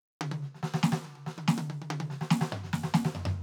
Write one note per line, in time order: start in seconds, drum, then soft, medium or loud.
0.22 high tom loud
0.33 high tom loud
0.43 snare soft
0.56 snare soft
0.64 snare loud
0.75 snare loud
0.84 snare loud
0.93 snare loud
1.06 high tom medium
1.16 high tom soft
1.28 snare medium
1.39 high tom loud
1.49 snare loud
1.59 high tom loud
1.71 high tom medium
1.83 high tom medium
1.91 high tom loud
2.01 high tom loud
2.11 snare medium
2.22 snare medium
2.32 snare loud
2.42 snare loud
2.53 mid tom loud
2.65 snare medium
2.74 snare loud
2.84 snare loud
2.95 snare loud
3.06 snare loud
3.16 floor tom medium
3.26 floor tom loud